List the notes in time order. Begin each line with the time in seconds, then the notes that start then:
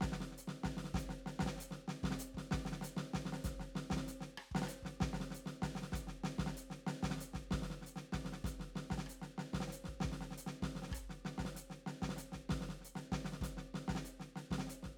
0.01 kick, snare
0.12 snare
0.21 snare
0.31 snare
0.38 hi-hat pedal
0.48 snare
0.64 kick, snare
0.77 snare
0.84 snare
0.94 kick
0.99 hi-hat pedal
1.09 snare
1.26 snare
1.39 kick, snare
1.46 snare
1.57 snare, hi-hat pedal
1.71 snare
1.88 snare
2.03 kick, snare
2.11 snare
2.19 cross-stick, hi-hat pedal
2.35 kick, snare
2.51 kick, snare
2.65 snare
2.72 snare
2.82 snare, hi-hat pedal
2.97 snare
3.14 kick, snare
3.26 snare
3.33 snare
3.39 snare
3.44 kick, snare, hi-hat pedal
3.60 snare
3.76 snare
3.90 kick, snare
3.97 snare
4.07 snare, hi-hat pedal
4.21 snare
4.38 cross-stick
4.51 kick, snare
4.62 snare
4.67 cross-stick, hi-hat pedal
4.83 kick, snare
5.01 kick, snare
5.13 snare
5.20 snare
5.31 snare, hi-hat pedal
5.46 snare
5.62 kick, snare
5.75 snare
5.82 snare
5.93 kick, hi-hat pedal
6.07 snare
6.24 snare
6.39 kick, snare
6.46 snare
6.55 cross-stick, hi-hat pedal
6.70 snare
6.87 snare
7.03 kick, snare
7.10 snare
7.17 snare, hi-hat pedal
7.34 kick, snare
7.51 kick, snare
7.62 snare
7.70 snare
7.82 snare
7.86 hi-hat pedal
7.96 snare
8.13 kick, snare
8.25 snare
8.33 snare
8.44 kick, snare, hi-hat pedal
8.60 snare
8.76 snare
8.90 kick, snare
8.98 snare
9.07 cross-stick, hi-hat pedal
9.22 snare
9.38 snare
9.54 kick, snare
9.61 snare
9.68 snare
9.72 hi-hat pedal
9.84 kick, snare
10.01 snare
10.05 kick
10.12 snare
10.21 snare
10.38 hi-hat pedal
10.47 snare
10.62 kick, snare
10.75 snare
10.82 snare
10.88 kick, snare
10.93 cross-stick, hi-hat pedal
11.10 snare
11.25 snare
11.38 kick, snare
11.45 snare
11.55 snare, hi-hat pedal
11.70 snare
11.87 snare
12.02 kick, snare
12.09 snare
12.17 snare, hi-hat pedal
12.32 kick, snare
12.49 kick, snare
12.61 snare
12.69 snare
12.81 snare
12.85 hi-hat pedal
12.96 snare
13.12 kick, snare
13.25 snare
13.32 snare
13.41 kick, hi-hat pedal
13.57 snare
13.74 snare
13.88 kick, snare
13.95 snare
14.05 cross-stick, hi-hat pedal
14.20 snare
14.36 snare
14.51 kick, snare
14.59 snare
14.67 snare, hi-hat pedal
14.83 kick, snare